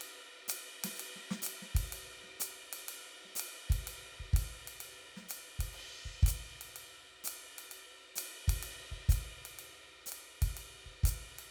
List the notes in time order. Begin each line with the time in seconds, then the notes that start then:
0.01 ride
0.48 hi-hat pedal, ride
0.84 snare, ride
0.95 hi-hat pedal
1.00 ride
1.16 snare
1.31 snare
1.42 hi-hat pedal
1.47 ride
1.62 snare
1.75 kick, ride
1.85 hi-hat pedal
1.92 ride
2.23 snare
2.40 hi-hat pedal, ride
2.73 ride
2.88 ride
3.25 snare
3.29 snare
3.35 hi-hat pedal
3.40 ride
3.70 kick, ride
3.87 ride
4.20 kick
4.33 kick, ride
4.67 ride
4.80 ride
5.17 snare
5.22 snare
5.25 snare, hi-hat pedal
5.31 ride
5.59 kick, ride
5.73 ride
6.05 kick
6.23 kick, ride
6.27 hi-hat pedal
6.61 ride
6.76 ride
7.24 hi-hat pedal, ride
7.58 ride
7.71 ride
8.16 hi-hat pedal, ride
8.48 kick, ride
8.63 ride
8.91 kick
9.09 kick, hi-hat pedal, ride
9.45 ride
9.59 ride
10.06 hi-hat pedal
10.12 ride
10.42 kick, ride
10.57 ride
10.86 kick
11.03 kick, hi-hat pedal, ride
11.39 ride